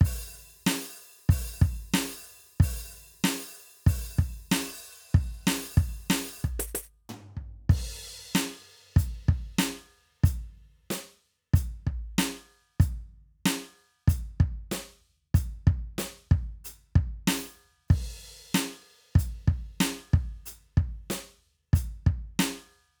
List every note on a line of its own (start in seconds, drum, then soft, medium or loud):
0.01 open hi-hat loud
0.01 kick loud
0.67 open hi-hat loud
0.67 snare loud
0.74 snare soft
1.29 open hi-hat loud
1.29 kick loud
1.62 kick loud
1.94 open hi-hat loud
1.94 snare loud
2.60 open hi-hat loud
2.60 kick loud
3.24 open hi-hat loud
3.24 snare loud
3.87 open hi-hat loud
3.87 kick loud
4.19 kick loud
4.51 open hi-hat loud
4.51 snare loud
5.14 kick loud
5.47 open hi-hat loud
5.47 snare loud
5.77 kick loud
6.10 open hi-hat loud
6.10 snare loud
6.43 kick medium
6.43 hi-hat pedal soft
6.60 high tom loud
6.75 high tom loud
7.09 floor tom loud
7.37 kick medium
7.70 kick loud
7.70 crash loud
8.35 open hi-hat loud
8.35 snare loud
8.96 closed hi-hat loud
8.96 kick loud
9.29 kick loud
9.59 closed hi-hat loud
9.59 snare loud
10.24 closed hi-hat loud
10.24 kick loud
10.90 closed hi-hat loud
10.90 snare loud
11.54 closed hi-hat loud
11.54 kick loud
11.87 kick medium
12.18 closed hi-hat loud
12.18 snare loud
12.80 closed hi-hat loud
12.80 kick loud
13.46 closed hi-hat loud
13.46 snare loud
14.08 closed hi-hat loud
14.08 kick loud
14.40 kick loud
14.71 closed hi-hat loud
14.71 snare loud
15.34 closed hi-hat loud
15.34 kick loud
15.67 kick loud
15.98 closed hi-hat loud
15.98 snare loud
16.31 kick loud
16.64 closed hi-hat loud
16.96 kick loud
17.28 open hi-hat loud
17.28 snare loud
17.88 kick loud
17.88 hi-hat pedal soft
17.88 crash loud
18.55 closed hi-hat loud
18.55 snare loud
19.15 closed hi-hat loud
19.15 kick loud
19.48 kick loud
19.80 closed hi-hat loud
19.80 snare loud
20.14 kick loud
20.46 closed hi-hat loud
20.77 kick loud
21.10 closed hi-hat loud
21.10 snare loud
21.73 closed hi-hat loud
21.73 kick loud
22.07 kick loud
22.39 closed hi-hat loud
22.39 snare loud